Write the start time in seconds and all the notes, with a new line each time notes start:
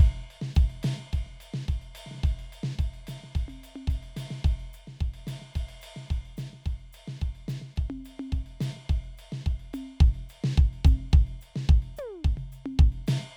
0.01 kick, ride bell
0.13 snare
0.32 ride
0.43 snare
0.57 kick, hi-hat pedal, ride
0.71 ride
0.80 kick
0.85 snare, ride
1.00 snare
1.15 kick, ride
1.28 snare
1.42 hi-hat pedal, ride
1.56 snare
1.70 kick, hi-hat pedal, ride
1.83 ride
1.97 hi-hat pedal, ride
2.08 snare
2.13 snare
2.16 snare
2.20 snare
2.24 kick, snare, hi-hat pedal, ride
2.41 ride
2.54 hi-hat pedal, ride
2.65 snare
2.81 kick, hi-hat pedal, ride
2.95 ride
3.09 snare, hi-hat pedal, ride
3.25 snare
3.37 kick, ride
3.50 high tom, ride
3.65 hi-hat pedal, ride
3.78 high tom
3.89 kick, hi-hat pedal, ride
4.05 ride
4.18 snare, hi-hat pedal, ride
4.32 snare
4.46 kick, hi-hat pedal, ride
4.61 ride
4.75 hi-hat pedal, ride
4.89 snare
5.01 kick, hi-hat pedal, ride bell
5.16 ride
5.29 snare, hi-hat pedal, ride bell
5.44 snare
5.55 kick, hi-hat pedal, ride
5.70 ride
5.83 hi-hat pedal, ride bell
5.98 snare
6.10 kick, hi-hat pedal, ride
6.27 ride
6.39 snare, hi-hat pedal, ride bell
6.55 snare
6.66 kick, hi-hat pedal, ride
6.81 ride
6.94 hi-hat pedal, ride bell
7.09 snare
7.21 kick, hi-hat pedal, ride
7.37 ride
7.50 snare, hi-hat pedal, ride bell
7.63 snare
7.78 kick, ride
7.92 high tom
8.06 hi-hat pedal, ride
8.21 high tom
8.34 kick, hi-hat pedal, ride
8.48 ride
8.63 snare, hi-hat pedal, ride bell
8.78 snare
8.91 kick, snare, hi-hat pedal, ride
9.06 ride
9.19 hi-hat pedal, ride bell
9.34 snare
9.47 kick, hi-hat pedal, ride
9.61 ride
9.75 hi-hat pedal, high tom, ride bell
10.02 kick, hi-hat pedal, ride
10.16 ride
10.31 hi-hat pedal, ride
10.46 snare
10.59 kick, ride
10.75 ride
10.86 kick, hi-hat pedal, high tom, ride bell
11.13 kick, hi-hat pedal, ride
11.28 ride
11.43 hi-hat pedal, ride bell
11.58 snare
11.71 kick, ride
11.84 ride
11.91 kick
11.98 hi-hat pedal, high tom, ride bell
12.26 kick, ride
12.39 floor tom, ride
12.54 hi-hat pedal, ride
12.68 high tom
12.81 kick, ride
12.94 ride
13.09 snare, hi-hat pedal, ride